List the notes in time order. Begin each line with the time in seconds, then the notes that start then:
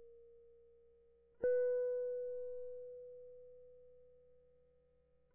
1.44 B4